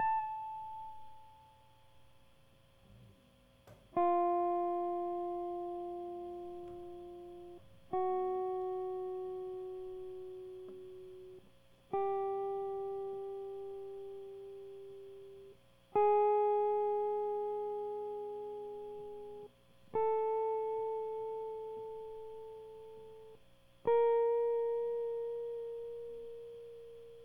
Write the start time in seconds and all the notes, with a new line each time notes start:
0.00 A5
3.97 F4
7.94 F#4
11.94 G4
15.96 G#4
19.95 A4
23.87 A#4